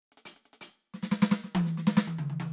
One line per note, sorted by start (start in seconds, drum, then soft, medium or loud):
0.12 closed hi-hat soft
0.17 closed hi-hat medium
0.25 closed hi-hat loud
0.36 closed hi-hat soft
0.46 closed hi-hat soft
0.53 closed hi-hat medium
0.61 closed hi-hat loud
0.94 snare soft
1.03 snare medium
1.11 snare medium
1.22 snare loud
1.31 snare medium
1.44 snare soft
1.55 high tom loud
1.66 snare soft
1.78 snare soft
1.87 snare loud
2.07 high tom medium
2.19 mid tom medium
2.30 high tom medium
2.40 high tom medium